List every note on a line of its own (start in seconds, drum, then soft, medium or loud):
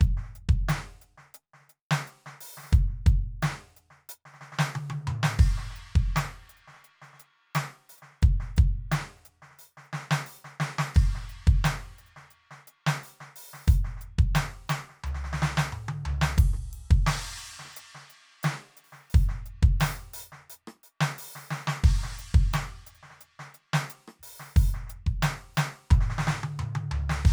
0.01 closed hi-hat medium
0.01 kick loud
0.17 snare soft
0.24 snare soft
0.35 closed hi-hat medium
0.49 kick loud
0.69 closed hi-hat loud
0.69 snare loud
0.92 hi-hat pedal soft
1.02 closed hi-hat medium
1.18 snare soft
1.34 closed hi-hat loud
1.54 snare soft
1.60 snare soft
1.69 closed hi-hat medium
1.91 snare loud
2.07 closed hi-hat medium
2.26 snare soft
2.41 open hi-hat loud
2.57 snare soft
2.63 snare soft
2.71 closed hi-hat medium
2.71 kick loud
2.71 snare soft
2.71 hi-hat pedal soft
2.80 snare soft
2.84 snare soft
2.88 snare soft
2.95 snare soft
3.06 closed hi-hat medium
3.06 kick loud
3.42 closed hi-hat loud
3.42 snare loud
3.69 hi-hat pedal soft
3.77 closed hi-hat medium
3.90 snare soft
4.09 open hi-hat loud
4.09 hi-hat pedal medium
4.25 snare soft
4.33 snare soft
4.33 hi-hat pedal soft
4.41 snare soft
4.52 snare soft
4.59 snare loud
4.65 hi-hat pedal soft
4.75 high tom loud
4.90 high tom loud
5.07 mid tom loud
5.23 snare loud
5.39 kick loud
5.39 crash medium
5.58 snare soft
5.70 snare soft
5.76 closed hi-hat medium
5.95 kick loud
6.16 open hi-hat loud
6.16 snare loud
6.49 closed hi-hat medium
6.57 closed hi-hat soft
6.68 snare soft
6.74 snare soft
6.84 closed hi-hat medium
7.02 snare soft
7.02 hi-hat pedal soft
7.13 snare soft
7.20 closed hi-hat medium
7.55 closed hi-hat loud
7.55 snare loud
7.89 open hi-hat medium
7.89 hi-hat pedal soft
7.98 closed hi-hat soft
8.02 snare soft
8.12 snare soft
8.22 closed hi-hat soft
8.22 kick loud
8.40 snare soft
8.57 closed hi-hat medium
8.57 kick loud
8.92 closed hi-hat loud
8.92 snare loud
9.17 snare soft
9.17 hi-hat pedal soft
9.25 closed hi-hat medium
9.42 snare soft
9.51 snare soft
9.59 open hi-hat medium
9.59 hi-hat pedal soft
9.77 snare soft
9.84 hi-hat pedal soft
9.93 snare medium
10.11 snare loud
10.26 open hi-hat medium
10.36 hi-hat pedal soft
10.44 snare soft
10.60 snare loud
10.60 hi-hat pedal soft
10.78 snare loud
10.95 kick loud
10.95 crash medium
11.06 hi-hat pedal soft
11.15 snare soft
11.29 closed hi-hat medium
11.47 kick loud
11.64 closed hi-hat loud
11.64 snare loud
11.84 hi-hat pedal soft
11.98 closed hi-hat medium
12.06 closed hi-hat soft
12.16 snare soft
12.31 closed hi-hat medium
12.51 snare soft
12.67 closed hi-hat medium
12.87 snare loud
13.03 open hi-hat medium
13.08 hi-hat pedal soft
13.20 snare soft
13.36 open hi-hat medium
13.53 snare soft
13.67 open hi-hat medium
13.67 kick loud
13.85 snare soft
13.97 snare soft
14.01 closed hi-hat medium
14.18 kick loud
14.35 closed hi-hat loud
14.35 snare loud
14.67 closed hi-hat loud
14.67 snare loud
14.67 hi-hat pedal soft
14.89 snare soft
15.04 floor tom loud
15.04 hi-hat pedal medium
15.14 snare soft
15.24 snare medium
15.33 snare medium
15.42 snare loud
15.57 snare loud
15.72 mid tom medium
15.88 high tom loud
16.05 floor tom loud
16.21 snare loud
16.38 kick loud
16.38 ride loud
16.53 cross-stick soft
16.73 ride medium
16.91 kick loud
17.07 snare loud
17.07 crash loud
17.39 closed hi-hat soft
17.59 snare soft
17.65 cross-stick soft
17.69 snare soft
17.69 hi-hat pedal soft
17.76 closed hi-hat loud
17.95 snare soft
18.10 closed hi-hat medium
18.43 closed hi-hat loud
18.43 snare loud
18.77 closed hi-hat medium
18.84 open hi-hat soft
18.92 snare soft
19.10 open hi-hat medium
19.14 kick loud
19.22 hi-hat pedal soft
19.29 snare soft
19.46 closed hi-hat medium
19.63 kick loud
19.80 open hi-hat loud
19.80 snare loud
20.13 open hi-hat loud
20.21 hi-hat pedal soft
20.32 snare soft
20.50 open hi-hat loud
20.50 hi-hat pedal medium
20.67 cross-stick medium
20.83 hi-hat pedal soft
20.83 open hi-hat medium
21.01 snare loud
21.11 hi-hat pedal soft
21.18 open hi-hat loud
21.35 snare soft
21.51 snare medium
21.67 snare loud
21.84 kick loud
21.84 crash medium
22.03 snare medium
22.03 hi-hat pedal soft
22.19 closed hi-hat medium
22.34 kick loud
22.53 closed hi-hat loud
22.53 snare loud
22.78 hi-hat pedal soft
22.87 closed hi-hat medium
22.95 closed hi-hat soft
23.03 snare soft
23.10 snare soft
23.21 closed hi-hat medium
23.39 snare medium
23.54 closed hi-hat medium
23.73 snare loud
23.90 closed hi-hat loud
24.08 cross-stick medium
24.19 open hi-hat medium
24.19 kick soft
24.40 snare soft
24.56 open hi-hat loud
24.56 kick loud
24.69 hi-hat pedal soft
24.74 snare soft
24.87 closed hi-hat loud
24.87 snare soft
25.06 kick medium
25.22 closed hi-hat loud
25.22 snare loud
25.54 closed hi-hat loud
25.54 snare loud
25.54 hi-hat pedal soft
25.90 kick loud
25.90 hi-hat pedal soft
25.90 mid tom loud
26.01 snare soft
26.10 snare medium
26.18 snare loud
26.18 hi-hat pedal soft
26.27 snare loud
26.43 high tom loud
26.59 mid tom loud
26.75 high tom loud
26.91 floor tom loud
27.10 snare loud
27.25 kick loud
27.25 crash loud